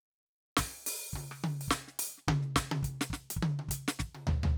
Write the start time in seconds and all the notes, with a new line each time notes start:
0.57 kick, snare, closed hi-hat
0.86 snare, closed hi-hat
1.13 kick, high tom
1.31 cross-stick
1.44 high tom
1.61 closed hi-hat
1.68 kick, snare
1.88 snare
1.99 closed hi-hat
2.18 snare
2.28 kick, high tom
2.42 snare
2.56 kick, snare
2.71 high tom
2.83 kick, closed hi-hat
3.01 snare
3.10 kick, snare
3.30 closed hi-hat
3.36 kick
3.42 high tom
3.59 high tom
3.68 kick, closed hi-hat
3.88 snare
3.99 kick, snare
4.15 crash, high tom
4.27 kick, floor tom
4.43 floor tom